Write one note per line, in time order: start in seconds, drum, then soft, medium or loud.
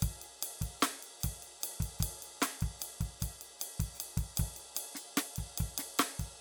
0.01 kick medium
0.01 hi-hat pedal medium
0.01 ride loud
0.22 ride medium
0.42 hi-hat pedal medium
0.42 ride loud
0.62 kick medium
0.62 ride medium
0.81 snare loud
0.81 hi-hat pedal medium
0.81 ride loud
1.03 ride medium
1.21 kick medium
1.21 hi-hat pedal medium
1.21 ride loud
1.25 snare soft
1.43 ride soft
1.62 hi-hat pedal medium
1.62 ride loud
1.81 kick medium
1.81 ride medium
2.00 kick medium
2.00 hi-hat pedal medium
2.00 ride loud
2.23 ride medium
2.41 snare loud
2.41 hi-hat pedal medium
2.41 ride loud
2.62 kick medium
2.62 ride medium
2.80 hi-hat pedal medium
2.80 ride loud
3.01 kick medium
3.01 ride medium
3.21 kick medium
3.21 hi-hat pedal medium
3.21 ride loud
3.42 ride medium
3.60 hi-hat pedal medium
3.60 ride loud
3.80 kick medium
3.80 ride medium
3.95 hi-hat pedal medium
4.01 ride loud
4.18 kick medium
4.18 ride medium
4.36 kick medium
4.36 hi-hat pedal medium
4.36 ride loud
4.57 ride medium
4.76 hi-hat pedal medium
4.76 ride loud
4.96 snare medium
4.96 ride bell medium
5.18 snare loud
5.18 hi-hat pedal medium
5.18 ride loud
5.37 kick soft
5.37 ride medium
5.58 kick medium
5.58 hi-hat pedal medium
5.58 ride loud
5.79 snare medium
5.79 ride loud
5.99 snare loud
5.99 hi-hat pedal medium
5.99 ride loud
6.20 kick soft
6.20 ride medium